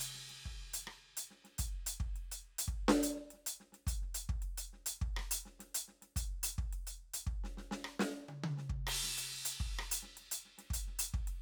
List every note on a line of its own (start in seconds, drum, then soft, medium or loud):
0.01 closed hi-hat medium
0.15 snare soft
0.30 snare soft
0.30 closed hi-hat soft
0.45 kick soft
0.45 snare soft
0.74 closed hi-hat loud
0.88 cross-stick medium
1.17 closed hi-hat medium
1.31 snare soft
1.45 snare soft
1.45 closed hi-hat soft
1.59 closed hi-hat medium
1.59 kick soft
1.87 closed hi-hat loud
2.00 kick soft
2.16 closed hi-hat soft
2.32 closed hi-hat medium
2.59 closed hi-hat loud
2.68 kick soft
2.89 snare medium
3.04 closed hi-hat loud
3.17 snare soft
3.31 snare soft
3.31 closed hi-hat soft
3.47 closed hi-hat loud
3.61 snare soft
3.73 snare soft
3.73 closed hi-hat soft
3.87 closed hi-hat medium
3.87 kick soft
4.02 snare soft
4.15 closed hi-hat medium
4.30 kick soft
4.43 closed hi-hat soft
4.58 closed hi-hat medium
4.73 snare soft
4.87 closed hi-hat loud
5.02 kick soft
5.17 cross-stick medium
5.20 cross-stick medium
5.32 closed hi-hat loud
5.46 snare soft
5.60 snare soft
5.60 closed hi-hat soft
5.75 closed hi-hat loud
5.88 snare soft
6.02 snare soft
6.02 closed hi-hat soft
6.17 closed hi-hat medium
6.17 kick soft
6.44 closed hi-hat loud
6.59 kick soft
6.73 closed hi-hat soft
6.87 closed hi-hat medium
7.14 closed hi-hat loud
7.27 kick soft
7.44 snare soft
7.58 snare soft
7.72 snare medium
7.85 cross-stick medium
8.00 snare medium
8.13 snare soft
8.29 closed hi-hat soft
8.29 high tom medium
8.44 high tom medium
8.58 snare soft
8.70 kick soft
8.87 cross-stick medium
8.87 crash loud
9.04 snare soft
9.07 snare soft
9.18 closed hi-hat medium
9.33 snare soft
9.46 closed hi-hat loud
9.61 kick soft
9.79 cross-stick medium
9.83 cross-stick soft
9.92 closed hi-hat loud
10.03 snare soft
10.18 snare soft
10.18 closed hi-hat soft
10.32 closed hi-hat loud
10.46 snare soft
10.59 snare soft
10.59 closed hi-hat soft
10.71 closed hi-hat medium
10.71 kick soft
10.88 snare soft
11.00 closed hi-hat loud
11.14 kick soft
11.28 closed hi-hat soft